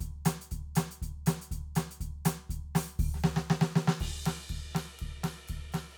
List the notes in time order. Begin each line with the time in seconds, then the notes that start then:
0.01 closed hi-hat, kick
0.26 closed hi-hat, snare
0.42 closed hi-hat
0.52 closed hi-hat, kick
0.76 closed hi-hat, snare
0.91 closed hi-hat
1.02 closed hi-hat, kick
1.27 closed hi-hat, snare
1.42 closed hi-hat
1.52 closed hi-hat, kick
1.76 closed hi-hat, snare
1.91 closed hi-hat
2.01 kick
2.26 closed hi-hat, snare
2.50 closed hi-hat, kick
2.76 open hi-hat, snare
2.99 open hi-hat, kick
3.15 snare
3.24 snare
3.37 snare
3.50 snare
3.62 snare
3.76 snare
3.88 snare
4.00 kick, hi-hat pedal, crash
4.26 snare, ride
4.50 kick, ride
4.75 snare, ride
4.99 kick, ride
5.24 snare, ride
5.48 kick, hi-hat pedal, ride
5.72 snare, hi-hat pedal, ride
5.92 ride